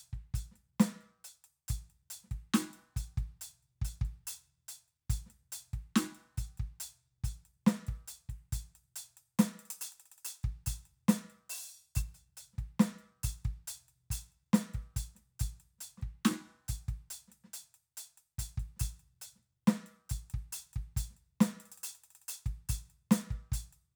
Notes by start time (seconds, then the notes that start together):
0.13 kick, closed hi-hat
0.35 closed hi-hat, kick
0.52 snare
0.56 closed hi-hat
0.80 closed hi-hat, snare
1.01 closed hi-hat
1.25 closed hi-hat
1.45 closed hi-hat
1.69 closed hi-hat, kick
1.91 closed hi-hat
2.11 closed hi-hat
2.24 snare
2.32 kick, closed hi-hat
2.54 closed hi-hat, snare
2.74 snare, closed hi-hat
2.97 closed hi-hat, kick
3.18 kick, closed hi-hat
3.42 closed hi-hat
3.63 closed hi-hat
3.82 closed hi-hat, kick
4.02 kick, closed hi-hat
4.28 closed hi-hat
4.48 closed hi-hat
4.69 closed hi-hat
4.89 closed hi-hat
5.10 closed hi-hat, kick
5.27 snare
5.31 closed hi-hat
5.53 closed hi-hat
5.74 kick, closed hi-hat
5.96 closed hi-hat, snare
6.15 closed hi-hat
6.38 closed hi-hat, kick
6.58 kick, closed hi-hat
6.81 closed hi-hat
7.24 closed hi-hat, kick
7.46 closed hi-hat
7.67 closed hi-hat, snare
7.87 kick, closed hi-hat
8.08 closed hi-hat
8.30 kick, closed hi-hat
8.53 closed hi-hat, kick
8.76 closed hi-hat
8.96 closed hi-hat
9.18 closed hi-hat
9.39 closed hi-hat, snare
9.60 closed hi-hat
9.66 closed hi-hat
9.71 closed hi-hat
9.82 closed hi-hat
9.93 closed hi-hat
10.00 closed hi-hat
10.06 closed hi-hat
10.12 closed hi-hat
10.19 closed hi-hat
10.25 closed hi-hat
10.44 kick, closed hi-hat
10.67 closed hi-hat, kick
10.86 closed hi-hat
11.09 closed hi-hat, snare
11.30 closed hi-hat
11.50 open hi-hat
11.96 open hi-hat, kick, hi-hat pedal
12.15 closed hi-hat
12.38 closed hi-hat
12.54 snare
12.59 kick, closed hi-hat
12.80 closed hi-hat, snare
12.99 closed hi-hat
13.24 closed hi-hat, kick
13.45 kick, closed hi-hat
13.68 closed hi-hat
13.89 closed hi-hat
14.11 closed hi-hat, kick
14.32 closed hi-hat
14.54 closed hi-hat, snare
14.74 kick, closed hi-hat
14.97 closed hi-hat, kick
15.16 snare, closed hi-hat
15.40 closed hi-hat, kick
15.61 closed hi-hat
15.79 closed hi-hat, snare
15.98 snare
16.02 kick, closed hi-hat
16.25 closed hi-hat, snare
16.31 snare
16.69 closed hi-hat, kick
16.89 kick, closed hi-hat
17.11 closed hi-hat
17.28 snare
17.32 closed hi-hat
17.45 snare
17.54 closed hi-hat
17.75 closed hi-hat
17.98 closed hi-hat
18.18 closed hi-hat
18.39 closed hi-hat, kick
18.58 kick, closed hi-hat
18.77 closed hi-hat, snare
18.82 kick
19.00 closed hi-hat
19.22 closed hi-hat
19.36 snare
19.43 closed hi-hat
19.68 closed hi-hat, snare
19.87 closed hi-hat
20.10 closed hi-hat, kick
20.31 kick, closed hi-hat
20.53 closed hi-hat
20.74 kick, closed hi-hat
20.97 closed hi-hat, kick
21.11 snare
21.17 closed hi-hat
21.41 closed hi-hat, snare
21.61 closed hi-hat
21.66 closed hi-hat
21.72 closed hi-hat
21.78 closed hi-hat
21.84 closed hi-hat
21.96 closed hi-hat
22.04 closed hi-hat
22.11 closed hi-hat
22.16 closed hi-hat
22.22 closed hi-hat
22.29 closed hi-hat
22.47 kick, closed hi-hat
22.69 closed hi-hat, kick
22.91 closed hi-hat
23.12 closed hi-hat, snare
23.31 kick, closed hi-hat
23.52 closed hi-hat, kick
23.73 closed hi-hat